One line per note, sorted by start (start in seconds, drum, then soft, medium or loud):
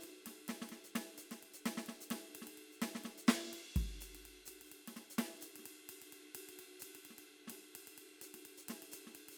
0.01 hi-hat pedal soft
0.01 ride medium
0.26 snare soft
0.26 ride medium
0.49 snare medium
0.49 ride medium
0.62 snare soft
0.70 snare soft
0.70 ride soft
0.84 hi-hat pedal medium
0.96 snare medium
0.96 ride medium
1.18 hi-hat pedal medium
1.18 ride soft
1.32 snare soft
1.32 ride soft
1.43 ride soft
1.54 hi-hat pedal medium
1.66 snare medium
1.66 ride medium
1.78 snare medium
1.87 snare soft
1.87 ride soft
2.01 hi-hat pedal medium
2.11 snare medium
2.11 ride medium
2.35 ride medium
2.42 snare soft
2.47 ride medium
2.58 ride soft
2.72 hi-hat pedal soft
2.82 snare medium
2.82 ride medium
2.95 snare soft
3.04 snare soft
3.04 ride soft
3.18 hi-hat pedal medium
3.28 snare loud
3.28 ride medium
3.54 ride medium
3.76 kick medium
3.76 ride medium
3.95 snare soft
4.01 hi-hat pedal medium
4.01 ride medium
4.15 ride soft
4.26 ride soft
4.37 snare soft
4.46 hi-hat pedal medium
4.46 ride medium
4.62 ride soft
4.67 hi-hat pedal soft
4.72 ride medium
4.88 snare soft
4.88 ride medium
4.97 snare soft
4.97 ride soft
5.10 hi-hat pedal medium
5.19 snare medium
5.19 ride medium
5.34 snare soft
5.41 hi-hat pedal medium
5.41 ride medium
5.56 snare soft
5.56 ride medium
5.66 ride medium
5.89 ride medium
6.02 ride soft
6.13 ride soft
6.35 ride medium
6.49 ride soft
6.80 hi-hat pedal medium
6.80 ride medium
6.95 ride soft
7.11 snare soft
7.19 ride soft
7.48 snare soft
7.48 ride medium
7.62 snare soft
7.76 ride medium
7.88 ride medium
7.98 ride medium
8.10 snare soft
8.22 hi-hat pedal medium
8.22 ride medium
8.34 snare soft
8.34 ride medium
8.46 ride medium
8.58 hi-hat pedal medium
8.69 snare soft
8.69 ride medium
8.83 ride medium
8.92 hi-hat pedal medium
8.92 ride medium
9.07 snare soft
9.15 ride medium
9.29 hi-hat pedal soft
9.29 ride medium